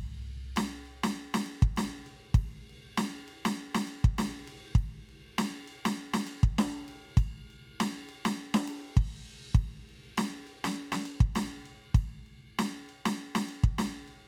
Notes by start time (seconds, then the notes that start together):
0.23 ride
0.57 snare, ride bell
0.86 ride
1.04 snare
1.35 snare
1.47 ride
1.63 kick
1.77 snare, ride
2.07 ride bell
2.35 kick, ride
2.70 ride
2.98 snare, ride bell
3.29 ride
3.46 snare
3.75 snare
3.88 ride bell
4.05 kick
4.19 snare, ride
4.49 ride
4.76 kick, ride
5.10 ride
5.39 snare, ride bell
5.68 ride bell
5.86 snare
6.15 snare
6.28 ride bell
6.44 kick
6.59 snare, ride bell
6.89 ride
7.18 kick, ride bell
7.51 ride bell
7.81 snare, ride bell
8.10 ride
8.26 snare
8.55 snare
8.69 ride
8.98 kick, crash
9.16 crash
9.55 kick, ride
9.90 ride
10.18 snare, ride
10.48 ride bell
10.65 snare
10.93 snare
11.06 ride bell
11.21 kick
11.36 snare, ride bell
11.66 ride bell
11.95 kick, ride bell
12.27 ride
12.60 snare, ride bell
12.90 ride bell
13.06 snare
13.36 snare
13.50 ride bell
13.64 kick
13.79 snare, ride bell
14.09 ride